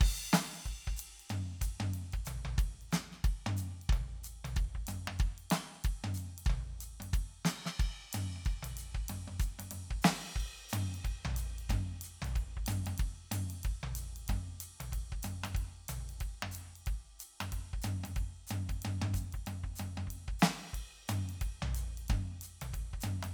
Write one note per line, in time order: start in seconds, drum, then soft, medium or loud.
0.01 kick loud
0.01 crash loud
0.33 snare loud
0.33 hi-hat pedal medium
0.33 ride loud
0.55 ride soft
0.66 kick medium
0.66 ride soft
0.87 kick medium
0.97 hi-hat pedal medium
0.97 ride medium
1.20 ride soft
1.30 high tom loud
1.30 ride soft
1.61 kick medium
1.61 hi-hat pedal medium
1.61 ride medium
1.80 high tom loud
1.94 ride medium
2.13 kick medium
2.13 ride soft
2.25 floor tom loud
2.25 hi-hat pedal medium
2.25 ride medium
2.45 floor tom loud
2.58 kick medium
2.58 ride medium
2.81 ride soft
2.91 snare loud
2.91 hi-hat pedal medium
2.91 ride soft
3.12 snare soft
3.24 kick medium
3.24 ride medium
3.46 high tom loud
3.57 hi-hat pedal medium
3.57 ride medium
3.82 ride soft
3.89 kick loud
3.89 floor tom loud
3.89 ride soft
4.24 kick soft
4.24 hi-hat pedal medium
4.24 ride medium
4.45 floor tom loud
4.45 ride soft
4.57 kick medium
4.57 ride soft
4.75 kick soft
4.87 hi-hat pedal medium
4.87 high tom loud
4.87 ride medium
5.08 high tom medium
5.19 kick medium
5.19 ride soft
5.38 ride soft
5.51 snare loud
5.51 hi-hat pedal medium
5.51 ride medium
5.73 snare soft
5.84 kick medium
5.84 ride medium
6.04 high tom loud
6.14 hi-hat pedal medium
6.14 ride medium
6.38 ride medium
6.45 kick medium
6.45 ride soft
6.50 floor tom loud
6.80 kick soft
6.80 hi-hat pedal medium
6.80 ride medium
7.00 high tom medium
7.00 ride medium
7.14 kick medium
7.14 ride medium
7.45 snare loud
7.45 hi-hat pedal medium
7.45 ride medium
7.66 snare medium
7.80 kick medium
7.80 ride soft
8.13 hi-hat pedal medium
8.13 high tom loud
8.13 ride medium
8.36 high tom soft
8.46 kick medium
8.46 ride soft
8.50 hi-hat pedal soft
8.63 floor tom medium
8.63 ride medium
8.77 hi-hat pedal medium
8.77 ride medium
8.95 kick medium
9.09 high tom loud
9.09 ride medium
9.28 high tom medium
9.40 kick medium
9.40 hi-hat pedal medium
9.40 ride medium
9.59 high tom medium
9.59 ride medium
9.71 high tom medium
9.71 ride medium
9.91 kick medium
10.02 snare loud
10.02 hi-hat pedal medium
10.02 crash medium
10.36 kick medium
10.40 ride soft
10.69 hi-hat pedal medium
10.73 high tom loud
10.73 ride medium
10.95 ride soft
11.05 kick medium
11.05 ride soft
11.25 floor tom loud
11.37 hi-hat pedal medium
11.37 ride medium
11.59 ride soft
11.70 kick medium
11.70 high tom loud
11.70 ride medium
12.02 hi-hat pedal medium
12.02 ride medium
12.22 floor tom loud
12.22 ride soft
12.36 kick medium
12.36 ride soft
12.57 kick medium
12.67 hi-hat pedal medium
12.67 high tom loud
12.67 ride medium
12.77 kick soft
12.86 high tom medium
12.86 ride medium
12.98 kick medium
12.98 ride medium
13.32 hi-hat pedal medium
13.32 high tom loud
13.32 ride loud
13.50 ride medium
13.64 kick medium
13.64 ride medium
13.83 floor tom loud
13.96 hi-hat pedal medium
13.96 ride medium
14.16 ride soft
14.28 kick medium
14.28 high tom loud
14.28 ride medium
14.60 hi-hat pedal medium
14.60 ride medium
14.80 floor tom medium
14.80 ride medium
14.92 kick medium
14.92 ride medium
15.12 kick medium
15.23 hi-hat pedal medium
15.23 high tom loud
15.23 ride medium
15.44 high tom loud
15.44 ride medium
15.55 kick medium
15.55 ride medium
15.89 floor tom loud
15.89 hi-hat pedal medium
15.89 ride medium
16.09 ride soft
16.21 kick medium
16.21 ride medium
16.43 high tom loud
16.52 hi-hat pedal medium
16.52 ride medium
16.76 ride soft
16.87 kick medium
16.87 ride medium
17.20 hi-hat pedal medium
17.20 ride medium
17.41 high tom loud
17.41 ride medium
17.52 kick medium
17.52 ride medium
17.73 kick medium
17.82 hi-hat pedal medium
17.82 high tom loud
17.82 ride medium
18.04 high tom medium
18.04 ride medium
18.16 kick medium
18.16 ride soft
18.47 kick soft
18.47 hi-hat pedal medium
18.47 ride medium
18.51 high tom loud
18.69 kick medium
18.69 ride soft
18.82 high tom loud
18.82 ride medium
19.02 high tom loud
19.14 kick medium
19.14 hi-hat pedal medium
19.14 ride medium
19.33 kick medium
19.33 ride soft
19.47 high tom loud
19.47 ride medium
19.64 kick soft
19.76 hi-hat pedal medium
19.76 high tom loud
19.76 ride medium
19.98 high tom loud
20.07 kick soft
20.07 ride medium
20.28 kick medium
20.40 snare loud
20.40 hi-hat pedal medium
20.40 crash medium
20.74 kick medium
20.74 ride medium
21.08 hi-hat pedal medium
21.08 high tom loud
21.08 ride medium
21.29 ride soft
21.41 kick medium
21.41 ride medium
21.62 floor tom loud
21.75 hi-hat pedal medium
21.75 ride medium
21.98 ride soft
22.09 kick medium
22.09 high tom loud
22.09 ride medium
22.42 hi-hat pedal medium
22.42 ride medium
22.62 floor tom medium
22.62 ride medium
22.74 kick medium
22.74 ride medium
22.94 kick medium
23.01 hi-hat pedal medium
23.01 high tom loud
23.01 ride medium
23.23 high tom medium
23.23 ride medium